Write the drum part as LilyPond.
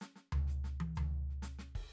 \new DrumStaff \drummode { \time 4/4 \tempo 4 = 125 \tuplet 3/2 { <hhp sn>8 sn8 tomfh8 <sn hhp>8 sn8 <tommh hh>8 <hhp tomfh>8 r8 sn8 <sn hhp>8 sn8 <bd cymr>8 } | }